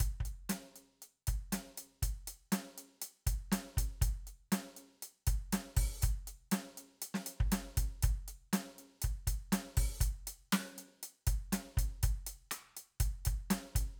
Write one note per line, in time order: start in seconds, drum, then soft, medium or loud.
0.02 kick medium
0.02 closed hi-hat loud
0.20 kick soft
0.25 closed hi-hat medium
0.49 snare medium
0.49 closed hi-hat loud
0.76 closed hi-hat medium
1.02 closed hi-hat medium
1.27 kick medium
1.27 closed hi-hat loud
1.52 snare medium
1.52 closed hi-hat loud
1.77 closed hi-hat loud
2.02 kick medium
2.02 closed hi-hat loud
2.27 closed hi-hat loud
2.52 snare medium
2.52 closed hi-hat loud
2.78 closed hi-hat medium
3.02 closed hi-hat loud
3.26 kick medium
3.26 closed hi-hat loud
3.52 snare medium
3.52 closed hi-hat loud
3.77 kick medium
3.77 closed hi-hat loud
4.01 kick medium
4.01 closed hi-hat loud
4.27 closed hi-hat medium
4.52 snare medium
4.52 closed hi-hat loud
4.76 closed hi-hat medium
5.02 closed hi-hat loud
5.27 kick medium
5.27 closed hi-hat loud
5.53 snare medium
5.53 closed hi-hat loud
5.77 kick medium
5.77 open hi-hat loud
6.02 kick medium
6.02 closed hi-hat loud
6.02 hi-hat pedal loud
6.27 closed hi-hat medium
6.51 snare medium
6.51 closed hi-hat loud
6.77 closed hi-hat medium
7.02 closed hi-hat loud
7.14 snare medium
7.26 closed hi-hat loud
7.40 kick medium
7.52 snare medium
7.52 closed hi-hat loud
7.77 kick medium
7.77 closed hi-hat loud
8.03 kick medium
8.03 closed hi-hat loud
8.28 closed hi-hat medium
8.53 snare medium
8.53 closed hi-hat loud
8.78 closed hi-hat medium
9.02 kick medium
9.02 closed hi-hat loud
9.27 kick medium
9.27 closed hi-hat loud
9.52 snare medium
9.52 closed hi-hat loud
9.77 kick medium
9.77 open hi-hat loud
10.00 kick medium
10.00 closed hi-hat loud
10.00 hi-hat pedal loud
10.27 closed hi-hat loud
10.52 snare medium
10.52 closed hi-hat loud
10.78 closed hi-hat medium
11.03 closed hi-hat loud
11.27 kick medium
11.27 closed hi-hat loud
11.52 snare medium
11.52 closed hi-hat loud
11.77 kick medium
11.77 closed hi-hat loud
12.03 kick medium
12.03 closed hi-hat loud
12.26 closed hi-hat loud
12.51 cross-stick medium
12.51 closed hi-hat loud
12.77 closed hi-hat medium
13.00 kick medium
13.00 closed hi-hat loud
13.25 kick medium
13.25 closed hi-hat loud
13.50 snare medium
13.50 closed hi-hat loud
13.75 kick medium
13.75 closed hi-hat loud